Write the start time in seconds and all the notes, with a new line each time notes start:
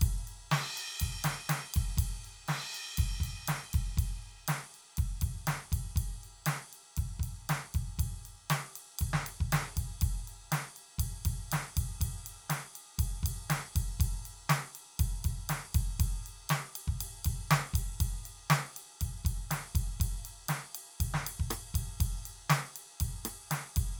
0.02 kick, ride
0.28 ride
0.52 snare, ride
0.78 ride
1.01 kick, ride
1.25 snare, ride
1.50 snare, ride
1.75 kick, ride
1.98 kick, ride
2.25 ride
2.49 snare, ride
2.75 ride
2.98 kick, ride
3.21 kick, ride
3.48 snare, ride
3.74 kick, ride
3.98 kick, ride
4.49 snare, ride
4.75 ride
4.98 kick, ride
5.22 kick, ride
5.48 snare, ride
5.73 kick, ride
5.97 kick, ride
6.24 ride
6.47 snare, ride
6.74 ride
6.97 kick, ride
7.20 kick, ride
7.50 snare, ride
7.75 kick, ride
8.00 kick, ride
8.26 ride
8.51 snare, ride
8.76 ride
9.00 kick, ride
9.14 snare
9.27 ride
9.41 kick
9.53 snare, ride
9.78 kick, ride
10.02 kick, ride
10.28 ride
10.53 snare, ride
10.77 ride
10.99 kick, ride
11.26 kick, ride
11.53 snare, ride
11.78 kick, ride
12.02 kick, ride
12.27 ride
12.50 snare, ride
12.76 ride
12.99 kick, ride
13.24 kick, ride
13.51 snare, ride
13.76 kick, ride
14.01 kick, ride
14.26 ride
14.50 snare, ride
14.76 ride
15.00 kick, ride
15.25 kick, ride
15.50 snare, ride
15.75 kick, ride
16.00 kick, ride
16.27 ride
16.50 snare, ride
16.76 ride
16.88 kick
17.01 ride
17.25 kick, ride
17.52 snare, ride
17.74 kick, ride
18.01 kick, ride
18.26 ride
18.51 snare, ride
18.77 ride
19.02 kick, ride
19.26 kick, ride
19.52 snare, ride
19.76 kick, ride
20.01 kick, ride
20.26 ride
20.49 snare, ride
20.76 ride
21.01 kick, ride
21.15 snare
21.27 ride
21.40 kick
21.51 cross-stick, ride
21.75 kick, ride
22.01 kick, ride
22.26 ride
22.50 snare, ride
22.77 ride
23.01 kick, ride
23.26 cross-stick, ride
23.52 snare, ride
23.77 kick, ride